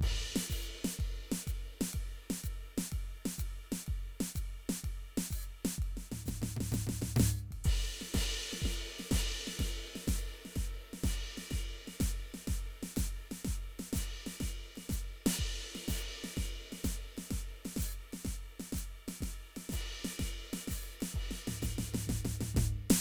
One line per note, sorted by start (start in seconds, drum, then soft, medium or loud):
0.01 kick medium
0.01 ride loud
0.16 kick soft
0.36 snare medium
0.49 kick soft
0.49 hi-hat pedal loud
0.49 ride loud
0.84 snare medium
0.99 kick soft
0.99 ride medium
1.32 snare medium
1.47 kick soft
1.47 hi-hat pedal medium
1.47 ride loud
1.81 snare medium
1.93 kick soft
1.93 ride loud
2.30 snare medium
2.43 kick soft
2.43 hi-hat pedal medium
2.43 ride medium
2.78 snare medium
2.92 kick soft
2.92 ride loud
3.25 snare medium
3.38 kick soft
3.38 hi-hat pedal loud
3.38 ride loud
3.72 snare medium
3.87 kick soft
3.87 ride medium
4.20 snare medium
4.35 kick soft
4.35 hi-hat pedal loud
4.35 ride loud
4.69 snare medium
4.84 kick soft
4.84 ride loud
5.17 snare medium
5.30 kick soft
5.30 hi-hat pedal loud
5.30 ride loud
5.65 snare medium
5.78 kick soft
5.78 ride medium
5.97 snare soft
6.12 snare soft
6.12 floor tom medium
6.26 kick soft
6.26 snare soft
6.26 floor tom medium
6.26 hi-hat pedal medium
6.42 snare medium
6.42 floor tom medium
6.47 hi-hat pedal soft
6.56 floor tom medium
6.60 snare medium
6.71 kick soft
6.71 snare medium
6.71 floor tom medium
6.71 hi-hat pedal loud
6.87 snare medium
6.87 floor tom medium
7.02 snare medium
7.02 floor tom medium
7.16 snare loud
7.16 floor tom loud
7.16 hi-hat pedal loud
7.39 hi-hat pedal soft
7.51 kick soft
7.51 ride medium
7.64 kick medium
7.64 crash loud
7.64 ride medium
8.01 snare soft
8.14 kick soft
8.14 snare medium
8.14 ride loud
8.51 snare soft
8.51 ride medium
8.62 kick soft
8.62 snare soft
8.62 ride medium
8.99 snare soft
8.99 ride medium
9.11 kick medium
9.11 snare medium
9.11 ride loud
9.47 snare soft
9.47 ride medium
9.59 kick soft
9.59 snare soft
9.59 ride loud
9.95 snare soft
9.95 ride medium
10.06 kick soft
10.06 snare medium
10.06 hi-hat pedal medium
10.06 ride loud
10.44 snare soft
10.44 ride soft
10.56 kick soft
10.56 snare soft
10.56 ride medium
10.93 snare soft
10.93 ride soft
11.04 kick soft
11.04 snare medium
11.04 hi-hat pedal medium
11.04 ride medium
11.37 snare soft
11.37 ride medium
11.51 kick soft
11.51 snare soft
11.51 ride medium
11.87 snare soft
11.87 ride soft
12.00 kick soft
12.00 snare medium
12.00 hi-hat pedal medium
12.00 ride loud
12.34 snare soft
12.34 ride medium
12.47 kick soft
12.47 snare medium
12.47 ride loud
12.83 snare medium
12.83 ride medium
12.96 kick soft
12.96 snare medium
12.96 hi-hat pedal loud
12.96 ride loud
13.31 snare soft
13.31 ride medium
13.45 kick soft
13.45 snare medium
13.45 ride medium
13.79 snare soft
13.79 ride medium
13.93 kick soft
13.93 snare medium
13.93 hi-hat pedal loud
13.93 ride medium
14.26 snare soft
14.26 ride medium
14.40 kick soft
14.40 snare medium
14.40 ride medium
14.76 snare soft
14.76 ride medium
14.89 kick soft
14.89 snare medium
14.89 hi-hat pedal loud
14.89 ride medium
15.26 snare loud
15.26 ride medium
15.39 kick soft
15.39 hi-hat pedal soft
15.75 snare soft
15.75 ride medium
15.88 kick soft
15.88 snare medium
15.88 hi-hat pedal loud
15.88 ride medium
16.24 snare soft
16.24 ride medium
16.36 kick soft
16.36 snare medium
16.36 hi-hat pedal soft
16.36 ride medium
16.72 snare soft
16.72 ride medium
16.83 kick soft
16.83 snare medium
16.83 hi-hat pedal loud
16.83 ride loud
17.17 snare soft
17.17 ride medium
17.30 kick soft
17.30 snare medium
17.30 ride loud
17.65 snare soft
17.65 ride medium
17.76 kick soft
17.76 snare medium
17.76 hi-hat pedal loud
17.76 ride loud
18.13 snare soft
18.13 ride medium
18.25 kick soft
18.25 snare medium
18.25 ride medium
18.60 snare soft
18.60 ride medium
18.72 kick soft
18.72 snare medium
18.72 hi-hat pedal loud
18.72 ride loud
19.08 snare soft
19.08 ride loud
19.21 kick soft
19.21 snare soft
19.21 ride loud
19.56 snare soft
19.56 ride loud
19.69 kick soft
19.69 snare medium
19.69 hi-hat pedal medium
19.69 ride medium
20.05 snare medium
20.05 ride loud
20.19 kick soft
20.19 snare medium
20.19 ride medium
20.53 snare medium
20.53 ride loud
20.68 kick soft
20.68 snare medium
20.68 hi-hat pedal loud
20.68 ride medium
21.00 snare medium
21.00 ride medium
21.14 kick soft
21.14 ride medium
21.31 snare soft
21.47 snare medium
21.47 floor tom medium
21.62 kick soft
21.62 snare medium
21.62 floor tom medium
21.62 hi-hat pedal loud
21.78 snare medium
21.78 floor tom medium
21.94 snare medium
21.94 floor tom medium
22.07 kick soft
22.07 snare medium
22.07 floor tom medium
22.07 hi-hat pedal soft
22.25 snare medium
22.25 floor tom medium
22.41 snare medium
22.41 floor tom medium
22.55 kick soft
22.55 snare medium
22.55 floor tom loud
22.90 open hi-hat loud
22.90 snare loud